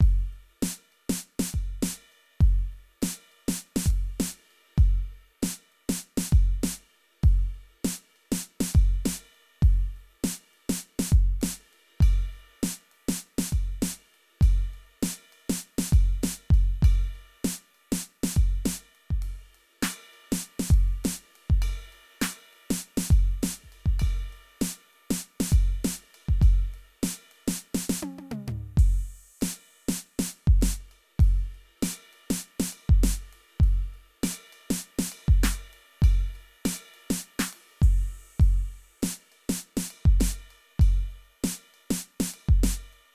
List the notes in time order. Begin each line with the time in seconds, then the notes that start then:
0.01 kick, ride
0.33 ride
0.63 snare, ride bell
0.93 ride bell
1.10 snare
1.23 ride
1.40 snare
1.53 kick, ride bell
1.83 snare, ride bell
2.12 ride bell
2.41 kick, ride
2.73 ride
3.02 snare, ride bell
3.32 ride bell
3.49 snare
3.76 snare
3.86 kick
3.91 ride
4.20 snare, ride
4.51 ride bell
4.78 kick, ride bell
5.14 ride
5.43 snare, ride bell
5.72 ride
5.90 snare
6.18 snare
6.32 kick, ride bell
6.64 snare, ride
6.95 ride
7.24 kick, ride
7.55 ride
7.85 snare, ride
8.16 ride bell
8.32 snare
8.61 snare
8.75 kick, ride bell
9.06 snare, ride bell
9.35 ride
9.63 kick, ride
9.97 ride
10.24 snare, ride
10.54 ride
10.70 snare
11.00 snare
11.12 kick, snare, ride
11.42 snare, ride
11.73 ride
12.01 kick, ride bell
12.33 ride
12.63 snare, ride
12.92 ride
13.09 snare
13.39 snare
13.53 kick, ride bell
13.83 snare, ride
14.14 ride
14.42 kick, ride bell
14.74 ride
15.03 snare, ride bell
15.33 ride bell
15.50 snare
15.79 snare
15.93 kick, ride bell
16.23 snare, ride bell
16.51 kick, ride bell
16.83 kick, ride bell
17.16 ride bell
17.45 snare, ride
17.75 ride bell
17.92 snare
18.05 ride
18.24 snare
18.36 kick, ride bell
18.66 snare, ride bell
18.95 ride
19.11 kick
19.23 ride
19.55 ride
19.83 snare, ride bell
20.14 ride bell
20.32 snare
20.45 ride
20.60 snare
20.71 kick, ride
21.05 snare, ride
21.36 ride
21.50 kick
21.62 ride bell
21.93 ride
22.22 snare, ride bell
22.53 ride
22.71 snare
22.98 snare
23.11 kick, ride bell
23.43 snare, ride
23.64 kick
23.73 ride bell
23.86 kick
24.00 kick, ride bell
24.33 ride
24.62 snare, ride bell
24.93 ride
25.11 snare
25.41 snare
25.52 kick, ride bell
25.85 snare, ride
26.15 ride bell
26.29 kick
26.42 kick, ride bell
26.74 ride
27.03 snare, ride bell
27.32 ride
27.48 snare
27.75 snare
27.90 snare
28.03 high tom
28.19 high tom
28.32 mid tom
28.48 floor tom
28.78 kick, ride bell, crash
29.08 ride
29.42 snare, ride bell
29.71 ride
29.89 snare
30.19 snare
30.32 ride
30.48 kick
30.62 snare, ride
30.91 ride bell
31.20 kick, ride
31.55 ride
31.83 snare, ride bell
32.13 ride
32.30 snare
32.60 snare
32.73 ride bell
32.90 kick
33.04 snare, ride
33.33 ride
33.60 kick, ride
33.94 ride
34.24 snare, ride bell
34.53 ride bell
34.71 snare
34.99 snare
35.12 ride bell
35.29 kick
35.44 snare, ride bell
35.73 ride
36.02 kick, ride bell
36.36 ride bell
36.66 snare, ride bell
36.94 ride
37.11 snare
37.40 snare
37.53 ride
37.82 kick, crash
38.01 crash
38.40 kick, ride
38.74 ride
39.03 snare, ride
39.32 ride bell
39.49 snare
39.77 snare
39.91 ride bell
40.06 kick
40.21 snare, ride bell
40.51 ride bell
40.80 kick, ride bell
41.12 ride
41.44 snare, ride bell
41.74 ride bell
41.91 snare
42.20 snare
42.34 ride bell
42.49 kick
42.64 snare, ride bell
42.93 ride